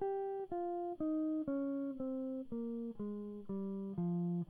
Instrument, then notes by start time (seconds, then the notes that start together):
electric guitar
0.02 G4
0.52 F4
1.01 D#4
1.48 C#4
2.01 C4
2.53 A#3
3.00 G#3
3.51 G3
3.99 F3